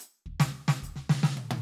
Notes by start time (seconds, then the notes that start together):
0.00 percussion
0.26 kick
0.40 snare, percussion
0.68 snare
0.82 kick, percussion
0.96 snare
1.09 snare
1.23 snare
1.37 high tom
1.51 high tom